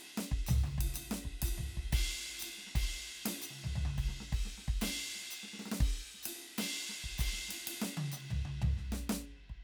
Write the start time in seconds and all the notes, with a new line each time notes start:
0.01 ride
0.18 snare
0.32 kick
0.47 floor tom, hi-hat pedal
0.64 high tom
0.78 kick, ride
0.94 hi-hat pedal, ride
1.11 snare
1.25 kick
1.42 kick, hi-hat pedal, ride
1.58 floor tom
1.77 kick
1.93 kick, ride
2.40 hi-hat pedal, ride
2.58 snare
2.67 snare
2.75 kick, ride
2.91 ride
3.26 snare, ride
3.41 hi-hat pedal, ride
3.51 high tom
3.64 floor tom
3.76 floor tom
3.85 high tom
3.98 kick, ride
4.09 snare
4.21 snare
4.33 kick, crash
4.45 snare
4.58 snare
4.68 kick
4.82 snare, ride
5.16 snare
5.21 snare
5.31 hi-hat pedal
5.43 snare
5.54 snare
5.59 snare
5.66 snare
5.72 snare
5.80 kick, crash
6.14 snare
6.23 hi-hat pedal, ride
6.58 snare, ride
6.73 ride
6.89 snare
7.04 kick
7.18 kick, hi-hat pedal, ride
7.33 snare
7.49 snare, ride
7.67 ride
7.82 snare
7.97 high tom
8.12 hi-hat pedal, high tom
8.31 floor tom
8.45 high tom
8.62 floor tom
8.77 snare
8.92 snare
9.10 snare
9.50 kick